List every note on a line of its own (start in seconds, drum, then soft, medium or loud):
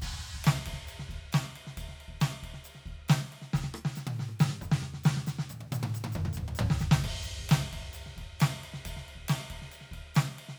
0.02 kick medium
0.02 percussion soft
0.02 crash loud
0.10 kick soft
0.10 snare soft
0.14 kick soft
0.19 snare soft
0.34 kick soft
0.44 snare loud
0.44 ride loud
0.44 percussion medium
0.66 kick soft
0.66 ride medium
0.73 kick soft
0.73 snare soft
0.87 ride medium
0.87 percussion soft
0.99 snare soft
1.09 kick soft
1.09 ride bell medium
1.16 kick soft
1.32 snare loud
1.32 ride loud
1.32 percussion medium
1.56 ride medium
1.67 snare soft
1.77 kick soft
1.77 ride medium
1.77 percussion medium
1.84 kick soft
1.89 snare soft
1.96 snare soft
2.00 ride soft
2.08 kick soft
2.14 kick soft
2.21 snare loud
2.21 ride loud
2.21 percussion medium
2.43 kick soft
2.43 ride medium
2.49 kick soft
2.54 snare soft
2.64 ride medium
2.64 percussion medium
2.75 snare soft
2.86 kick soft
2.86 ride bell soft
2.92 kick soft
3.08 snare loud
3.08 ride medium
3.08 percussion medium
3.32 ride medium
3.42 snare soft
3.54 kick soft
3.54 snare loud
3.54 percussion soft
3.61 kick soft
3.61 snare medium
3.74 cross-stick medium
3.78 cross-stick medium
3.85 snare medium
3.96 snare medium
3.96 percussion medium
4.07 high tom loud
4.19 snare medium
4.29 cross-stick soft
4.40 snare loud
4.40 percussion medium
4.61 kick soft
4.61 mid tom medium
4.61 percussion medium
4.72 snare loud
4.82 snare medium
4.94 snare soft
5.04 snare loud
5.04 percussion medium
5.17 snare medium
5.27 snare medium
5.27 percussion medium
5.39 snare medium
5.50 high tom medium
5.50 percussion medium
5.61 high tom medium
5.72 high tom loud
5.72 percussion medium
5.83 high tom loud
5.94 high tom medium
5.94 percussion medium
6.04 high tom loud
6.12 kick soft
6.12 mid tom loud
6.12 percussion medium
6.21 kick soft
6.25 mid tom medium
6.33 kick soft
6.33 percussion medium
6.37 floor tom medium
6.48 floor tom medium
6.55 percussion medium
6.55 floor tom loud
6.60 kick soft
6.70 snare loud
6.79 kick soft
6.79 snare medium
6.79 percussion medium
6.90 kick soft
6.90 snare loud
7.04 kick medium
7.04 ride loud
7.14 kick soft
7.14 cross-stick soft
7.23 percussion medium
7.39 kick soft
7.49 snare loud
7.49 ride loud
7.49 percussion medium
7.73 kick soft
7.73 ride medium
7.79 kick soft
7.79 snare soft
7.93 ride medium
7.93 percussion medium
8.06 snare soft
8.17 kick soft
8.17 ride medium
8.23 kick soft
8.40 snare loud
8.40 ride loud
8.40 percussion medium
8.64 ride medium
8.74 snare soft
8.85 kick soft
8.85 ride loud
8.85 percussion medium
8.92 kick soft
8.97 snare soft
9.08 ride soft
9.16 kick soft
9.21 kick soft
9.28 snare medium
9.28 ride loud
9.28 percussion medium
9.50 kick soft
9.50 ride medium
9.56 kick soft
9.62 snare soft
9.72 ride medium
9.72 percussion soft
9.81 snare soft
9.86 snare soft
9.92 kick soft
9.92 ride medium
10.15 snare loud
10.15 ride medium
10.15 percussion medium
10.39 ride medium
10.49 snare soft